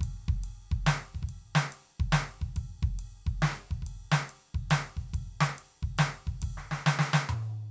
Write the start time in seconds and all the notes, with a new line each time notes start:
0.01 kick, ride
0.29 kick
0.44 ride
0.72 kick
0.87 snare, ride
1.15 kick
1.23 kick
1.30 ride
1.56 snare
1.73 ride
2.01 kick
2.13 snare, ride
2.42 kick
2.57 kick, ride
2.83 kick
3.00 ride
3.27 kick
3.43 snare, ride
3.72 kick
3.83 kick
3.87 ride
4.13 snare
4.30 ride
4.55 kick
4.71 snare, ride
4.98 kick
5.14 kick, ride
5.41 snare
5.59 ride
5.83 kick
5.99 snare, ride
6.28 kick
6.43 kick, ride
6.58 snare
6.72 snare
6.87 snare
7.00 snare
7.14 snare, hi-hat pedal
7.30 mid tom